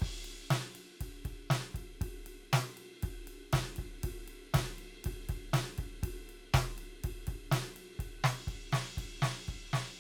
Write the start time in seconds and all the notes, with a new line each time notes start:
0.01 kick, ride
0.25 ride
0.51 snare, ride
0.76 ride
1.01 kick, ride
1.26 kick, ride
1.51 snare, ride
1.75 kick, ride
2.02 kick, ride
2.27 ride
2.54 snare, ride
2.78 ride
3.03 kick, ride
3.28 ride
3.54 kick, snare, ride
3.77 kick, ride
4.04 kick, ride
4.29 ride
4.55 kick, snare, ride
4.79 ride
5.05 kick, ride
5.30 kick, ride
5.54 snare, ride
5.79 kick, ride
6.04 kick, ride
6.30 ride
6.55 kick, snare, ride
6.79 ride
7.05 kick, ride
7.28 kick, ride
7.52 snare, ride
7.77 ride
8.00 kick, ride
8.25 snare, ride
8.48 kick, ride
8.73 snare, ride
8.98 kick, ride
9.23 snare, ride
9.49 kick, ride
9.74 snare, ride